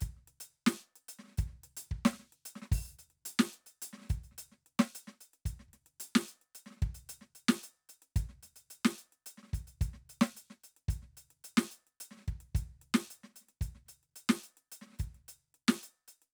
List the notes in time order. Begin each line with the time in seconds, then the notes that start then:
0.01 closed hi-hat, kick
0.17 snare
0.28 closed hi-hat
0.41 closed hi-hat
0.67 closed hi-hat, snare
0.81 snare
0.96 closed hi-hat
1.09 closed hi-hat
1.19 snare
1.24 snare
1.28 snare
1.31 snare
1.38 closed hi-hat, kick
1.48 snare
1.51 snare
1.54 snare
1.64 closed hi-hat
1.77 closed hi-hat
1.91 kick
2.06 closed hi-hat, snare
2.14 snare
2.20 snare
2.23 snare
2.33 closed hi-hat
2.46 closed hi-hat
2.56 snare
2.62 cross-stick, snare
2.72 open hi-hat, kick
2.99 closed hi-hat
3.11 closed hi-hat
3.26 closed hi-hat
3.39 snare
3.54 closed hi-hat
3.67 closed hi-hat
3.82 closed hi-hat
3.93 snare
3.98 snare
4.02 snare
4.05 snare
4.10 closed hi-hat, kick, snare
4.16 snare
4.24 closed hi-hat
4.32 snare
4.38 closed hi-hat
4.52 snare
4.67 closed hi-hat
4.79 closed hi-hat, snare
4.95 closed hi-hat
5.08 snare
5.12 snare
5.21 closed hi-hat
5.34 closed hi-hat
5.46 closed hi-hat, kick
5.60 snare
5.69 kick
5.74 snare, closed hi-hat
5.87 closed hi-hat
6.00 closed hi-hat
6.16 snare
6.28 closed hi-hat
6.42 closed hi-hat
6.55 closed hi-hat
6.66 snare
6.71 snare
6.77 snare
6.80 kick, snare, closed hi-hat
6.87 snare
6.95 closed hi-hat
7.09 closed hi-hat
7.22 snare
7.35 closed hi-hat
7.49 closed hi-hat, snare
7.64 closed hi-hat
7.89 closed hi-hat
8.02 closed hi-hat
8.16 closed hi-hat, kick
8.29 snare
8.43 closed hi-hat, snare
8.56 closed hi-hat
8.71 closed hi-hat
8.85 snare
8.98 closed hi-hat
9.13 closed hi-hat
9.26 closed hi-hat
9.38 snare
9.43 snare
9.48 snare
9.53 closed hi-hat, kick, snare
9.58 snare
9.68 closed hi-hat
9.81 closed hi-hat, kick
9.94 snare
10.10 closed hi-hat
10.22 closed hi-hat, snare
10.35 closed hi-hat, snare
10.50 snare
10.64 closed hi-hat
10.77 closed hi-hat
10.89 closed hi-hat, kick
11.02 snare
11.17 closed hi-hat
11.31 closed hi-hat
11.45 closed hi-hat
11.58 snare
11.71 closed hi-hat
11.87 closed hi-hat
12.01 closed hi-hat
12.11 snare
12.15 snare
12.17 snare
12.21 snare
12.28 kick, closed hi-hat
12.41 closed hi-hat
12.55 closed hi-hat, kick
12.82 closed hi-hat
12.94 snare, closed hi-hat
13.11 closed hi-hat
13.24 snare
13.29 snare
13.34 closed hi-hat, snare
13.37 snare
13.41 snare
13.47 snare, closed hi-hat
13.61 closed hi-hat, kick
13.75 snare
13.87 snare
13.88 closed hi-hat, snare
14.03 closed hi-hat
14.16 closed hi-hat
14.29 snare
14.44 closed hi-hat
14.57 closed hi-hat
14.72 closed hi-hat
14.82 snare
14.87 snare
14.90 snare
14.93 snare
14.99 closed hi-hat, kick, snare
15.02 snare
15.06 snare
15.10 snare
15.13 snare, closed hi-hat
15.15 snare
15.19 snare
15.29 closed hi-hat
15.55 closed hi-hat
15.68 snare, closed hi-hat
15.83 closed hi-hat
16.08 closed hi-hat
16.22 closed hi-hat